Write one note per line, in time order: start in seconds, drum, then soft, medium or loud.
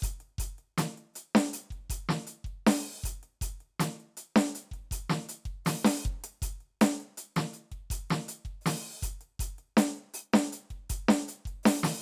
0.01 closed hi-hat loud
0.01 kick medium
0.01 hi-hat pedal medium
0.21 closed hi-hat soft
0.39 closed hi-hat loud
0.39 kick medium
0.59 closed hi-hat soft
0.78 closed hi-hat loud
0.78 snare loud
0.98 closed hi-hat soft
1.14 closed hi-hat loud
1.14 hi-hat pedal soft
1.35 snare loud
1.35 closed hi-hat soft
1.54 closed hi-hat loud
1.71 kick soft
1.71 closed hi-hat soft
1.90 closed hi-hat loud
1.90 kick medium
2.09 snare loud
2.27 closed hi-hat medium
2.45 kick medium
2.45 closed hi-hat soft
2.67 open hi-hat loud
2.67 snare loud
3.04 closed hi-hat loud
3.04 kick medium
3.04 hi-hat pedal medium
3.23 closed hi-hat soft
3.42 closed hi-hat loud
3.42 kick medium
3.61 closed hi-hat soft
3.80 closed hi-hat loud
3.80 snare loud
4.00 closed hi-hat soft
4.17 closed hi-hat loud
4.36 snare loud
4.36 closed hi-hat medium
4.55 closed hi-hat loud
4.72 kick soft
4.72 closed hi-hat soft
4.92 closed hi-hat loud
4.92 kick medium
5.10 snare loud
5.10 closed hi-hat medium
5.29 closed hi-hat loud
5.46 kick medium
5.46 closed hi-hat soft
5.65 open hi-hat loud
5.65 snare loud
5.65 hi-hat pedal medium
5.85 open hi-hat loud
5.85 snare loud
6.05 kick medium
6.05 hi-hat pedal medium
6.24 closed hi-hat loud
6.43 closed hi-hat loud
6.43 kick medium
6.61 closed hi-hat soft
6.82 closed hi-hat loud
6.82 snare loud
7.01 closed hi-hat soft
7.17 closed hi-hat loud
7.17 hi-hat pedal soft
7.37 snare loud
7.37 closed hi-hat medium
7.54 closed hi-hat medium
7.72 kick soft
7.72 closed hi-hat soft
7.91 closed hi-hat loud
7.91 kick medium
8.10 snare loud
8.10 closed hi-hat medium
8.29 closed hi-hat loud
8.45 kick medium
8.45 closed hi-hat soft
8.62 hi-hat pedal soft
8.66 open hi-hat loud
8.66 snare loud
9.03 closed hi-hat loud
9.03 kick medium
9.03 hi-hat pedal medium
9.21 closed hi-hat medium
9.40 closed hi-hat loud
9.40 kick medium
9.59 closed hi-hat soft
9.78 closed hi-hat loud
9.78 snare loud
9.95 closed hi-hat soft
10.14 open hi-hat loud
10.14 hi-hat pedal soft
10.34 snare loud
10.34 closed hi-hat medium
10.53 closed hi-hat loud
10.71 kick soft
10.71 closed hi-hat soft
10.90 closed hi-hat loud
10.90 kick medium
11.09 snare loud
11.29 closed hi-hat loud
11.46 kick medium
11.46 closed hi-hat medium
11.64 open hi-hat loud
11.64 snare loud
11.64 hi-hat pedal medium
11.84 open hi-hat loud
11.84 snare loud